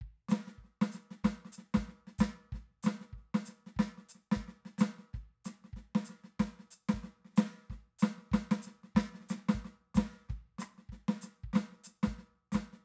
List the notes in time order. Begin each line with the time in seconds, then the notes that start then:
0.00 kick
0.29 snare, hi-hat pedal
0.32 snare
0.48 snare
0.58 kick
0.65 snare
0.82 snare
0.92 snare, hi-hat pedal
1.11 snare
1.24 kick, snare
1.45 snare
1.53 hi-hat pedal
1.58 snare
1.75 kick, snare
1.89 snare
2.08 snare
2.19 kick, snare, hi-hat pedal
2.53 kick, snare
2.83 snare, hi-hat pedal
2.87 snare
3.01 snare
3.13 kick
3.18 snare
3.35 snare
3.46 snare, hi-hat pedal
3.67 snare
3.77 kick, snare
3.98 snare
4.09 hi-hat pedal
4.15 snare
4.32 snare
4.37 kick
4.48 snare
4.66 snare
4.79 snare, hi-hat pedal
4.81 snare
4.99 snare
5.14 kick, snare
5.45 snare, hi-hat pedal
5.65 snare
5.74 kick, snare
5.95 snare
6.05 hi-hat pedal
6.10 snare
6.24 snare
6.40 kick, snare
6.60 snare
6.71 snare, hi-hat pedal
6.89 snare
6.94 kick
7.04 snare
7.25 snare
7.30 snare
7.33 snare
7.36 snare, hi-hat pedal
7.38 snare
7.58 snare
7.70 kick, snare
7.99 snare, hi-hat pedal
8.18 snare
8.23 snare
8.27 snare
8.32 kick, snare
8.52 snare
8.62 hi-hat pedal
8.67 snare
8.84 snare
8.96 kick, snare
9.15 snare
9.21 snare
9.29 snare, hi-hat pedal
9.38 snare
9.49 snare
9.55 kick
9.65 snare
9.95 kick, snare, hi-hat pedal
9.98 snare
10.13 snare
10.29 kick, snare
10.59 cross-stick, snare, hi-hat pedal
10.78 snare
10.90 kick, snare
11.09 snare
11.22 snare, hi-hat pedal
11.44 kick
11.54 snare
11.56 snare
11.73 snare
11.84 snare, hi-hat pedal
12.03 snare
12.08 kick
12.19 snare
12.52 kick, snare, hi-hat pedal
12.55 snare
12.73 snare